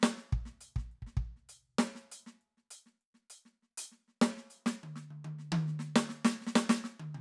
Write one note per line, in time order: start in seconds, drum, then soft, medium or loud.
0.00 snare soft
0.03 snare loud
0.17 snare soft
0.32 kick medium
0.45 snare soft
0.61 closed hi-hat medium
0.76 kick medium
0.76 snare soft
0.91 closed hi-hat soft
1.02 kick soft
1.06 snare soft
1.17 kick medium
1.36 snare soft
1.49 closed hi-hat medium
1.78 snare loud
1.95 snare soft
2.12 closed hi-hat medium
2.26 snare soft
2.41 closed hi-hat soft
2.57 snare soft
2.71 closed hi-hat medium
2.86 snare soft
3.01 closed hi-hat soft
3.14 snare soft
3.30 closed hi-hat medium
3.45 snare soft
3.62 snare soft
3.77 closed hi-hat loud
3.92 snare soft
4.08 snare soft
4.21 snare loud
4.37 snare soft
4.50 closed hi-hat medium
4.66 snare loud
4.83 high tom medium
4.96 snare soft
5.10 high tom soft
5.24 high tom medium
5.39 snare soft
5.52 high tom loud
5.67 snare soft
5.79 snare soft
5.96 snare loud
6.09 snare soft
6.25 snare loud
6.41 snare soft
6.47 snare medium
6.55 snare loud
6.69 snare loud
6.84 snare medium
7.00 high tom medium
7.14 mid tom medium